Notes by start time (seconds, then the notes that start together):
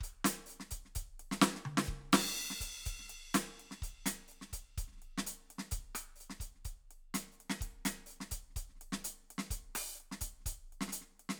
0.01 closed hi-hat, kick
0.25 closed hi-hat, snare
0.46 closed hi-hat, hi-hat pedal
0.60 snare
0.71 closed hi-hat, kick
0.86 snare
0.96 closed hi-hat, kick
1.02 kick
1.20 closed hi-hat
1.32 snare
1.42 snare
1.56 snare
1.66 high tom
1.78 snare
1.85 kick, hi-hat pedal
1.97 kick
2.13 snare, crash
2.38 closed hi-hat
2.51 snare
2.61 closed hi-hat, kick
2.80 snare
2.86 closed hi-hat, kick
3.00 snare
3.04 snare
3.09 snare, closed hi-hat
3.35 closed hi-hat, snare
3.60 closed hi-hat
3.71 snare
3.82 closed hi-hat, kick
3.90 kick
4.06 open hi-hat, snare
4.28 closed hi-hat, hi-hat pedal
4.42 snare
4.49 closed hi-hat, kick, snare
4.78 closed hi-hat, kick
4.84 kick, snare
4.92 snare
4.97 snare
5.02 closed hi-hat
5.18 snare
5.27 closed hi-hat
5.51 closed hi-hat
5.59 snare
5.72 closed hi-hat, kick
5.79 kick
5.95 closed hi-hat, cross-stick
6.16 hi-hat pedal
6.21 closed hi-hat
6.30 snare
6.40 closed hi-hat, kick
6.55 snare
6.65 closed hi-hat, kick
6.91 closed hi-hat
7.14 closed hi-hat, snare
7.32 hi-hat pedal
7.41 closed hi-hat
7.50 snare
7.61 kick, closed hi-hat
7.86 closed hi-hat, snare
8.06 closed hi-hat, hi-hat pedal
8.21 snare
8.32 closed hi-hat, kick
8.50 snare
8.56 closed hi-hat, kick
8.65 kick
8.70 snare
8.76 snare
8.81 closed hi-hat
8.93 snare
9.05 closed hi-hat
9.31 closed hi-hat
9.38 snare
9.51 closed hi-hat, kick
9.75 open hi-hat, cross-stick
9.95 hi-hat pedal
10.00 closed hi-hat
10.12 snare
10.21 closed hi-hat, kick
10.41 snare
10.46 closed hi-hat, kick
10.52 kick
10.73 closed hi-hat
10.81 snare
10.88 snare
10.93 closed hi-hat
11.01 snare
11.20 closed hi-hat
11.29 snare